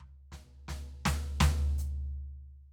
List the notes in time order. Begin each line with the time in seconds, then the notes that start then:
0.00 floor tom
0.32 snare, floor tom
0.68 snare, floor tom
1.05 snare, floor tom
1.40 snare, floor tom
1.78 hi-hat pedal